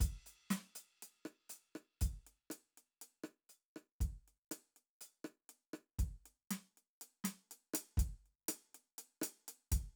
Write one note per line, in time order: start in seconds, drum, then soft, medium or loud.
0.01 closed hi-hat medium
0.01 kick medium
0.27 open hi-hat soft
0.51 open hi-hat medium
0.51 snare medium
0.76 open hi-hat medium
1.03 open hi-hat medium
1.26 cross-stick medium
1.50 open hi-hat medium
1.76 cross-stick soft
2.02 closed hi-hat medium
2.02 kick medium
2.27 closed hi-hat soft
2.51 cross-stick medium
2.51 closed hi-hat medium
2.78 closed hi-hat soft
3.02 closed hi-hat medium
3.24 cross-stick medium
3.50 closed hi-hat soft
3.77 cross-stick soft
4.01 kick medium
4.01 closed hi-hat medium
4.28 closed hi-hat soft
4.52 cross-stick medium
4.52 closed hi-hat medium
4.77 closed hi-hat soft
5.02 closed hi-hat soft
5.25 cross-stick medium
5.50 closed hi-hat soft
5.74 cross-stick medium
5.99 kick medium
5.99 closed hi-hat medium
6.26 closed hi-hat soft
6.51 snare medium
6.51 closed hi-hat medium
6.78 closed hi-hat soft
7.02 closed hi-hat medium
7.25 snare medium
7.25 closed hi-hat loud
7.52 closed hi-hat medium
7.74 cross-stick medium
7.74 closed hi-hat loud
7.98 kick medium
7.98 closed hi-hat medium
8.26 closed hi-hat soft
8.49 cross-stick medium
8.49 closed hi-hat loud
8.75 closed hi-hat soft
8.99 closed hi-hat medium
9.22 cross-stick medium
9.22 closed hi-hat loud
9.49 closed hi-hat medium
9.72 kick medium
9.72 closed hi-hat loud